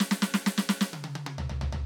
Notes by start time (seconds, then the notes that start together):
0.00 snare
0.11 snare
0.22 snare
0.34 snare
0.46 snare
0.58 snare
0.69 snare
0.81 snare
0.93 high tom
1.04 high tom
1.15 high tom
1.26 high tom
1.38 floor tom
1.49 floor tom
1.61 floor tom
1.72 floor tom